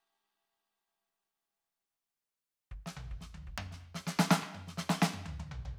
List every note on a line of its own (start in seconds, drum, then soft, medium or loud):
2.71 kick soft
2.86 snare medium
2.97 floor tom medium
3.11 kick soft
3.21 snare soft
3.34 mid tom medium
3.47 kick soft
3.58 high tom medium
3.71 snare soft
3.94 snare medium
4.07 snare medium
4.19 snare loud
4.31 snare loud
4.42 cross-stick medium
4.55 high tom medium
4.67 snare soft
4.89 snare loud
5.02 snare loud
5.13 high tom medium
5.26 mid tom medium
5.40 mid tom medium
5.51 floor tom medium
5.65 floor tom medium